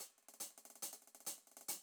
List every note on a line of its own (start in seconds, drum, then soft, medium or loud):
0.00 closed hi-hat medium
0.10 closed hi-hat soft
0.18 closed hi-hat soft
0.22 closed hi-hat soft
0.28 closed hi-hat soft
0.34 closed hi-hat soft
0.40 closed hi-hat loud
0.50 closed hi-hat soft
0.58 closed hi-hat soft
0.65 closed hi-hat soft
0.70 closed hi-hat soft
0.75 closed hi-hat soft
0.82 closed hi-hat loud
0.93 closed hi-hat medium
1.02 closed hi-hat soft
1.07 closed hi-hat soft
1.15 closed hi-hat soft
1.20 closed hi-hat soft
1.25 closed hi-hat loud
1.25 closed hi-hat soft
1.38 closed hi-hat soft
1.47 closed hi-hat soft
1.51 closed hi-hat soft
1.57 closed hi-hat soft
1.61 closed hi-hat soft
1.68 closed hi-hat loud